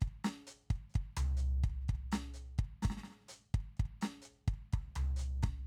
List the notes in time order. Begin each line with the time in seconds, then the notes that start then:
0.01 closed hi-hat, kick
0.08 kick
0.24 closed hi-hat, snare
0.47 closed hi-hat, hi-hat pedal
0.70 closed hi-hat, kick
0.76 kick
0.90 hi-hat pedal
0.94 kick, closed hi-hat
1.17 closed hi-hat, floor tom
1.37 closed hi-hat, hi-hat pedal
1.64 kick, closed hi-hat
1.70 kick
1.81 snare
1.89 kick, closed hi-hat
1.95 kick
2.12 closed hi-hat, snare
2.34 closed hi-hat, hi-hat pedal
2.58 kick, closed hi-hat
2.64 kick
2.83 open hi-hat, kick, snare
2.90 kick, snare
2.97 snare
3.04 snare
3.08 snare, closed hi-hat
3.16 snare
3.26 snare, hi-hat pedal
3.30 closed hi-hat, snare
3.35 snare
3.41 snare
3.54 kick, closed hi-hat
3.60 kick
3.77 kick, closed hi-hat
3.85 kick
4.02 closed hi-hat, snare
4.22 closed hi-hat, hi-hat pedal
4.48 kick, closed hi-hat
4.54 kick
4.73 kick, closed hi-hat, floor tom
4.96 closed hi-hat, floor tom
5.16 closed hi-hat, hi-hat pedal
5.43 closed hi-hat, kick, snare
5.49 kick